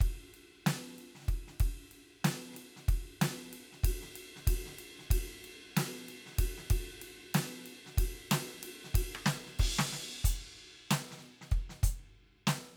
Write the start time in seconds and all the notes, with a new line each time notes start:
0.01 kick, ride
0.34 ride
0.67 snare, ride
0.99 ride
1.15 snare
1.20 snare
1.22 snare
1.29 kick, ride
1.48 snare
1.60 kick, ride
1.92 ride
2.25 snare, ride
2.53 snare, ride
2.77 snare
2.89 kick, ride
3.22 snare, ride
3.53 ride
3.73 snare
3.84 kick, ride
4.03 snare
4.16 ride
4.37 snare
4.47 kick, ride
4.66 snare
4.70 snare
4.79 ride
4.99 snare
5.11 kick, ride
5.40 ride
5.45 ride
5.77 snare, ride
6.07 snare, ride
6.26 snare, ride
6.32 snare
6.36 kick, snare, ride
6.58 snare
6.71 kick, ride
7.02 ride
7.35 snare, ride
7.66 ride
7.87 snare
7.98 kick, ride
8.32 snare, ride
8.63 ride
8.85 snare
8.95 kick, ride
9.15 cross-stick
9.26 snare
9.47 snare
9.59 kick, ride
9.79 snare
9.93 snare
10.25 closed hi-hat, kick
10.91 snare, closed hi-hat
11.11 snare
11.18 snare
11.20 snare, closed hi-hat
11.42 snare
11.52 kick, closed hi-hat
11.70 snare
11.84 closed hi-hat, kick
12.47 snare, closed hi-hat